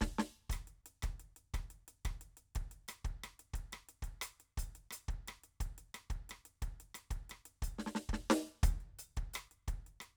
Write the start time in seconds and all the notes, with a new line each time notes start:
0.01 kick, snare
0.19 snare
0.50 closed hi-hat, kick, cross-stick
0.67 closed hi-hat
0.86 closed hi-hat
1.03 kick, cross-stick, closed hi-hat
1.20 closed hi-hat
1.36 closed hi-hat
1.54 kick, cross-stick, closed hi-hat
1.70 closed hi-hat
1.88 closed hi-hat
2.05 kick, cross-stick, closed hi-hat
2.21 closed hi-hat
2.37 closed hi-hat
2.55 kick, closed hi-hat
2.71 closed hi-hat
2.88 closed hi-hat, cross-stick
3.05 kick, closed hi-hat
3.24 cross-stick, closed hi-hat
3.39 closed hi-hat
3.54 kick, closed hi-hat
3.72 cross-stick, closed hi-hat
3.89 closed hi-hat
4.02 kick, closed hi-hat
4.22 closed hi-hat, cross-stick
4.40 closed hi-hat
4.57 closed hi-hat, kick
4.75 closed hi-hat
4.91 closed hi-hat, cross-stick
5.08 kick, closed hi-hat
5.28 cross-stick, closed hi-hat
5.44 closed hi-hat
5.60 kick, closed hi-hat
5.78 closed hi-hat
5.94 cross-stick, closed hi-hat
6.10 kick, closed hi-hat
6.29 cross-stick, closed hi-hat
6.45 closed hi-hat
6.62 kick, closed hi-hat
6.80 closed hi-hat
6.95 cross-stick, closed hi-hat
7.11 kick, closed hi-hat
7.30 cross-stick, closed hi-hat
7.46 closed hi-hat
7.62 closed hi-hat, kick
7.79 snare
7.86 snare
7.95 snare
8.09 kick
8.13 snare
8.30 snare
8.47 snare
8.63 closed hi-hat, kick
8.80 closed hi-hat
8.99 closed hi-hat
9.17 kick, closed hi-hat
9.34 closed hi-hat, cross-stick
9.51 closed hi-hat
9.68 kick, closed hi-hat
9.87 closed hi-hat
10.00 cross-stick, closed hi-hat